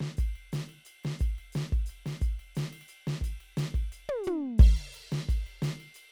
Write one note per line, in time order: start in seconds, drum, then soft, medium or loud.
0.01 snare medium
0.17 kick medium
0.17 hi-hat pedal medium
0.17 ride soft
0.36 ride soft
0.53 snare medium
0.53 hi-hat pedal medium
0.53 ride soft
0.69 ride soft
0.85 hi-hat pedal medium
0.85 ride soft
1.04 snare medium
1.04 ride soft
1.19 kick medium
1.19 hi-hat pedal medium
1.19 ride soft
1.39 ride soft
1.53 snare medium
1.53 hi-hat pedal medium
1.53 ride soft
1.73 kick medium
1.73 ride soft
1.86 hi-hat pedal medium
1.86 ride soft
2.06 snare medium
2.06 ride soft
2.22 kick medium
2.22 hi-hat pedal medium
2.22 ride soft
2.40 ride soft
2.56 snare medium
2.56 hi-hat pedal medium
2.56 ride soft
2.73 ride soft
2.81 ride soft
2.89 hi-hat pedal medium
2.89 ride soft
3.08 snare medium
3.08 ride soft
3.22 kick soft
3.22 hi-hat pedal medium
3.22 ride soft
3.41 ride soft
3.57 snare medium
3.57 hi-hat pedal medium
3.57 ride soft
3.75 kick medium
3.75 ride soft
3.92 hi-hat pedal medium
3.92 ride soft
4.09 high tom loud
4.24 floor tom loud
4.24 hi-hat pedal medium
4.59 kick loud
4.59 hi-hat pedal medium
4.59 ride medium
4.59 crash medium
4.77 ride soft
4.93 hi-hat pedal medium
4.93 ride soft
5.12 snare medium
5.12 ride soft
5.29 kick medium
5.29 hi-hat pedal medium
5.29 ride soft
5.47 ride soft
5.63 snare medium
5.63 hi-hat pedal medium
5.63 ride soft
5.80 ride soft
5.95 hi-hat pedal medium
5.95 ride soft